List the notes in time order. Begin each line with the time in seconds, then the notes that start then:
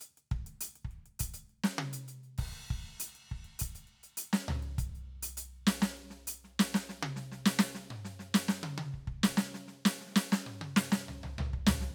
0.01 closed hi-hat
0.18 closed hi-hat
0.31 kick, closed hi-hat
0.47 closed hi-hat
0.61 closed hi-hat
0.76 closed hi-hat
0.85 kick
0.91 closed hi-hat
1.06 closed hi-hat
1.20 closed hi-hat, kick
1.34 closed hi-hat
1.50 closed hi-hat
1.64 snare
1.79 high tom
1.93 closed hi-hat
2.08 closed hi-hat
2.23 closed hi-hat
2.38 kick, crash
2.53 closed hi-hat
2.71 kick
2.85 closed hi-hat
3.00 closed hi-hat
3.15 closed hi-hat
3.30 kick, closed hi-hat
3.45 closed hi-hat
3.59 closed hi-hat, kick
3.75 closed hi-hat
3.87 closed hi-hat
4.03 closed hi-hat
4.17 closed hi-hat
4.33 snare
4.49 floor tom
4.63 closed hi-hat
4.79 closed hi-hat, kick
4.95 closed hi-hat
5.23 closed hi-hat
5.37 closed hi-hat
5.67 snare
5.82 snare
5.97 closed hi-hat
6.11 snare
6.28 closed hi-hat
6.45 snare
6.60 snare
6.75 snare
6.90 snare
7.03 high tom
7.16 snare
7.32 snare
7.46 snare
7.59 snare
7.75 snare
7.91 mid tom
8.05 snare
8.20 snare
8.35 snare
8.49 snare
8.63 high tom
8.78 high tom
8.94 kick
9.08 kick
9.24 snare
9.38 snare
9.54 snare
9.68 snare
9.86 snare
10.01 snare
10.07 snare
10.16 snare
10.32 snare
10.47 mid tom
10.62 high tom
10.77 snare
10.92 snare
11.09 floor tom
11.24 floor tom
11.39 floor tom
11.54 kick
11.67 snare, floor tom
11.81 snare